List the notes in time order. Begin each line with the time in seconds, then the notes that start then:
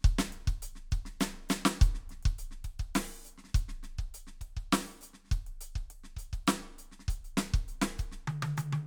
0.01 kick, snare, closed hi-hat
0.19 snare
0.32 snare, closed hi-hat
0.47 kick, closed hi-hat
0.62 closed hi-hat
0.75 snare
0.91 closed hi-hat, kick
1.05 snare
1.20 snare, hi-hat pedal
1.49 snare, hi-hat pedal
1.65 snare
1.81 closed hi-hat, kick
1.94 snare
2.09 snare, closed hi-hat
2.23 kick, closed hi-hat
2.38 closed hi-hat
2.51 snare
2.64 kick, closed hi-hat
2.79 kick, closed hi-hat
2.95 open hi-hat, snare
3.04 snare
3.08 snare
3.15 snare
3.24 closed hi-hat, hi-hat pedal
3.38 snare
3.44 snare
3.47 snare
3.54 closed hi-hat, kick
3.68 snare
3.83 snare, closed hi-hat
3.98 kick, closed hi-hat
4.14 closed hi-hat
4.27 snare
4.41 kick, closed hi-hat
4.56 kick, closed hi-hat
4.72 open hi-hat, snare
4.80 snare
5.01 closed hi-hat, hi-hat pedal
5.13 snare
5.24 snare
5.27 snare
5.31 kick, closed hi-hat
5.47 closed hi-hat
5.61 closed hi-hat
5.75 kick, snare
5.90 closed hi-hat
6.04 snare
6.17 closed hi-hat, kick
6.33 kick, closed hi-hat
6.47 closed hi-hat, snare
6.64 snare
6.78 closed hi-hat
6.92 snare
6.99 snare
7.08 closed hi-hat, kick
7.24 closed hi-hat
7.37 snare
7.54 closed hi-hat, kick
7.68 closed hi-hat
7.82 snare
7.99 closed hi-hat, kick
8.12 snare
8.27 high tom
8.42 high tom
8.57 hi-hat pedal, high tom
8.73 high tom